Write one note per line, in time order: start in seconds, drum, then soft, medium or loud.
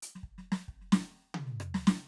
0.03 closed hi-hat loud
0.16 snare soft
0.23 kick soft
0.38 snare soft
0.52 snare loud
0.68 kick soft
0.82 snare soft
0.93 snare loud
1.18 snare soft
1.35 high tom loud
1.47 snare soft
1.60 cross-stick medium
1.75 snare loud
1.87 snare loud